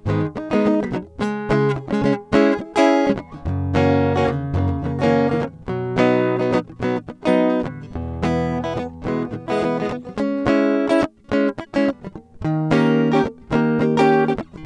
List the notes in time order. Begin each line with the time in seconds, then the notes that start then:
0.07 G#2 D#3 G#3
0.11 B3 D#4
0.37 G#3 D#4
0.53 G#3 B3 D#4
0.68 G#3 B3 D#4
0.82 F#3 B3 D#4
0.93 C3 F#3 D4
1.21 C#3 G#3
1.51 C#3 G#3 E4 G#4
1.77 D#4
1.90 C#4 E4
1.94 G#3
2.03 C#3 G#3
2.07 C#4 E4
2.34 G#3 C#4 E4 G#4
2.63 E4
2.77 C#4 E4 G#4
3.06 C#4 E4
3.21 C4
3.47 F#2 C#3
3.75 C#3 E3 A#3 C#4
3.79 F#4
4.17 A#3 C#4 F#4
4.21 D3
4.29 C#3
4.56 F#2 C#3 E3
4.60 A#3
4.84 F#2 C#3 E3 A#3
5.00 C#4 F#4
5.05 E3 A#3
5.30 A#3 C#4
5.35 E3
5.42 C#3 D3
5.70 B2 F#3
5.98 B2 F#3 B3 D#4
6.41 B3 D#4
6.49 B2
6.55 F#3 B3
6.81 B2 F#3
6.86 B3 D#4
7.27 F#3 B3 D#4
7.50 D#4
7.65 A2 D3
7.69 B3
7.95 E2 B2
8.24 E3 B3 E4
8.65 B3 E4
8.81 B3
9.06 B2 E3
9.10 G#3 B3
9.33 A2 E3
9.50 G#3 B3 E4
9.64 E3 G#3 B3
9.82 G#3 B3
9.91 D3 B3
10.07 B3
10.19 G#3 C#4
10.48 G#3 C#4 E4
10.91 C#4 E4
11.33 G#3 C#4 E4
11.75 C#4 E4
11.79 G#3
12.44 D#3 A#3
12.73 A#3 C#4 G4 A#4
13.13 C#4 G4 A#4
13.53 D#3 A#3 C4
13.57 G4 A#4
13.81 D#3 A#3 C4 G4
13.99 C#4 G4 A#4
14.30 C#4 G4